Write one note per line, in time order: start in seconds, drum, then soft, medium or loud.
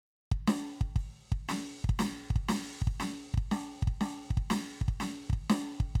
0.32 kick medium
0.47 open hi-hat medium
0.47 snare loud
0.81 kick medium
0.96 open hi-hat medium
0.96 kick medium
1.32 kick medium
1.48 open hi-hat loud
1.48 snare loud
1.84 kick soft
1.89 kick medium
1.99 open hi-hat medium
1.99 snare loud
2.30 kick soft
2.36 kick medium
2.49 open hi-hat loud
2.49 snare loud
2.82 kick soft
2.87 kick medium
3.00 open hi-hat medium
3.00 snare loud
3.34 kick soft
3.38 kick medium
3.52 open hi-hat medium
3.52 snare loud
3.57 open hi-hat soft
3.82 kick soft
3.87 kick medium
4.01 open hi-hat medium
4.01 snare loud
4.31 kick soft
4.37 kick medium
4.50 open hi-hat medium
4.50 snare loud
4.81 kick soft
4.88 kick medium
5.00 open hi-hat medium
5.00 snare loud
5.30 kick soft
5.33 kick medium
5.50 open hi-hat medium
5.50 snare loud
5.80 kick medium
5.95 kick medium
5.95 crash medium